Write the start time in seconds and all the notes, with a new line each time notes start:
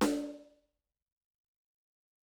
0.01 closed hi-hat, snare